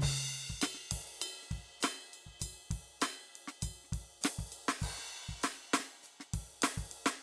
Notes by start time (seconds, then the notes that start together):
0.01 kick, hi-hat pedal, crash
0.50 kick
0.61 snare, hi-hat pedal, ride bell
0.74 snare
0.91 kick, ride
0.98 kick
1.20 hi-hat pedal, ride bell
1.42 snare
1.47 kick, snare, ride
1.58 kick
1.80 snare, hi-hat pedal, ride bell
2.13 ride bell
2.26 kick
2.37 snare, hi-hat pedal
2.41 kick, ride bell
2.52 kick
2.68 snare
2.70 kick, snare, ride
2.77 kick
3.00 snare, hi-hat pedal, ride bell
3.35 ride
3.48 snare
3.61 kick, hi-hat pedal, ride bell
3.69 kick
3.84 snare
3.92 kick, ride
3.99 kick
4.21 snare, hi-hat pedal, ride
4.38 kick
4.52 ride bell
4.68 snare
4.80 kick, hi-hat pedal, crash
4.88 kick
4.92 kick
4.98 snare
5.04 snare
5.10 snare
5.29 kick
5.41 snare, hi-hat pedal, ride bell
5.73 snare, ride bell
5.79 snare
6.03 hi-hat pedal, ride
6.20 snare
6.33 kick, ride
6.41 kick
6.62 snare, hi-hat pedal, ride
6.77 kick
6.83 kick
6.91 ride
7.06 snare